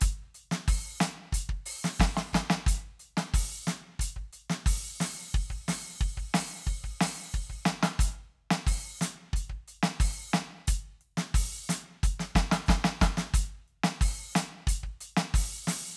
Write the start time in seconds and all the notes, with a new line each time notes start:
0.01 closed hi-hat, kick
0.23 kick
0.35 closed hi-hat
0.51 snare
0.58 snare
0.68 open hi-hat, kick
0.99 closed hi-hat, snare, hi-hat pedal
1.33 closed hi-hat, kick
1.49 kick
1.66 open hi-hat
1.84 snare
2.00 kick, snare
2.17 snare
2.33 kick, snare, hi-hat pedal
2.50 snare
2.67 closed hi-hat, kick
3.00 closed hi-hat
3.17 snare
3.34 open hi-hat, kick
3.67 closed hi-hat, snare, hi-hat pedal
3.99 closed hi-hat, kick
4.16 kick
4.33 closed hi-hat
4.50 snare
4.66 open hi-hat, kick
5.00 open hi-hat, snare
5.34 kick
5.50 kick
5.54 crash
5.68 open hi-hat, snare
6.01 open hi-hat, kick
6.17 kick
6.22 crash
6.34 open hi-hat, snare
6.67 open hi-hat, kick
6.84 kick
6.89 ride
7.01 open hi-hat, snare
7.34 kick
7.50 kick
7.54 crash, ride
7.66 snare, hi-hat pedal
7.83 snare
7.99 closed hi-hat, kick
8.51 snare
8.67 open hi-hat, kick
8.99 closed hi-hat, snare, hi-hat pedal
9.33 closed hi-hat, kick
9.50 kick
9.68 closed hi-hat
9.83 snare
10.00 open hi-hat, kick
10.32 snare, hi-hat pedal
10.68 closed hi-hat, kick
11.01 closed hi-hat
11.17 snare
11.34 open hi-hat, kick
11.66 closed hi-hat, snare, hi-hat pedal
12.03 closed hi-hat, kick
12.20 snare
12.35 kick, snare
12.52 snare
12.66 kick, snare, hi-hat pedal
12.84 snare
13.00 kick, snare, hi-hat pedal
13.17 snare
13.34 closed hi-hat, kick
13.68 closed hi-hat
13.84 snare
13.90 cross-stick
14.01 open hi-hat, kick
14.33 closed hi-hat, snare, hi-hat pedal
14.67 closed hi-hat, kick
14.83 kick
15.01 closed hi-hat
15.17 snare
15.34 open hi-hat, kick
15.67 open hi-hat, snare
15.93 snare